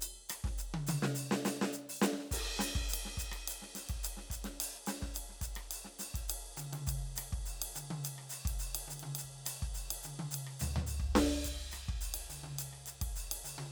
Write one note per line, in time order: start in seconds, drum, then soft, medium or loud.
0.01 hi-hat pedal medium
0.01 ride bell loud
0.29 cross-stick medium
0.29 hi-hat pedal medium
0.29 ride loud
0.44 kick medium
0.44 snare soft
0.58 cross-stick soft
0.58 hi-hat pedal medium
0.58 ride medium
0.74 high tom medium
0.87 hi-hat pedal loud
0.87 high tom loud
1.03 snare medium
1.15 hi-hat pedal loud
1.31 snare loud
1.45 snare medium
1.45 hi-hat pedal medium
1.62 snare medium
1.73 hi-hat pedal medium
1.89 open hi-hat medium
2.02 snare loud
2.02 hi-hat pedal medium
2.12 snare soft
2.20 snare soft
2.24 snare soft
2.31 kick soft
2.31 hi-hat pedal loud
2.31 ride loud
2.59 snare medium
2.59 hi-hat pedal loud
2.75 kick medium
2.75 snare soft
2.89 hi-hat pedal medium
2.94 ride loud
3.05 snare soft
3.17 kick soft
3.17 hi-hat pedal loud
3.17 ride medium
3.32 cross-stick medium
3.32 ride medium
3.48 hi-hat pedal medium
3.48 ride loud
3.62 snare soft
3.75 snare soft
3.75 hi-hat pedal medium
3.75 ride medium
3.89 kick soft
3.89 ride medium
4.04 hi-hat pedal loud
4.04 ride loud
4.17 snare soft
4.30 kick soft
4.30 hi-hat pedal medium
4.30 ride medium
4.44 snare medium
4.44 ride medium
4.60 hi-hat pedal loud
4.60 ride loud
4.87 snare medium
4.87 hi-hat pedal medium
4.87 ride medium
5.02 kick soft
5.02 snare soft
5.15 hi-hat pedal medium
5.15 ride loud
5.29 snare soft
5.41 kick soft
5.41 hi-hat pedal medium
5.41 ride medium
5.56 cross-stick medium
5.56 ride medium
5.71 hi-hat pedal medium
5.71 ride loud
5.85 snare soft
5.99 snare soft
5.99 hi-hat pedal medium
5.99 ride medium
6.14 kick soft
6.14 ride medium
6.29 hi-hat pedal medium
6.29 ride loud
6.57 hi-hat pedal medium
6.57 high tom medium
6.57 ride medium
6.73 high tom medium
6.73 ride medium
6.87 kick soft
6.87 hi-hat pedal medium
6.87 ride medium
7.16 cross-stick medium
7.16 hi-hat pedal medium
7.16 ride loud
7.33 kick soft
7.46 hi-hat pedal medium
7.62 ride loud
7.75 hi-hat pedal loud
7.75 high tom soft
7.91 high tom medium
8.04 hi-hat pedal medium
8.04 ride loud
8.18 cross-stick soft
8.30 cross-stick soft
8.30 hi-hat pedal medium
8.34 ride soft
8.45 kick medium
8.45 ride medium
8.59 hi-hat pedal medium
8.75 ride loud
8.88 hi-hat pedal medium
8.88 high tom medium
9.00 high tom medium
9.00 ride medium
9.15 hi-hat pedal medium
9.15 ride loud
9.24 kick soft
9.46 cross-stick medium
9.46 hi-hat pedal medium
9.46 ride loud
9.62 kick soft
9.75 hi-hat pedal medium
9.91 ride loud
10.03 hi-hat pedal medium
10.03 high tom medium
10.19 high tom medium
10.31 hi-hat pedal loud
10.31 ride loud
10.47 cross-stick medium
10.60 floor tom medium
10.60 hi-hat pedal loud
10.76 floor tom loud
10.87 hi-hat pedal medium
11.00 kick soft
11.15 snare loud
11.15 hi-hat pedal soft
11.15 crash medium
11.45 kick soft
11.45 hi-hat pedal medium
11.45 ride medium
11.72 cross-stick medium
11.72 hi-hat pedal medium
11.89 kick medium
12.01 hi-hat pedal medium
12.14 ride loud
12.30 hi-hat pedal medium
12.30 high tom soft
12.44 high tom medium
12.59 hi-hat pedal medium
12.59 ride loud
12.73 cross-stick soft
12.86 cross-stick soft
12.86 hi-hat pedal medium
12.86 ride medium
13.02 kick soft
13.02 ride medium
13.16 hi-hat pedal medium
13.32 ride loud
13.45 hi-hat pedal medium
13.45 high tom soft
13.58 high tom medium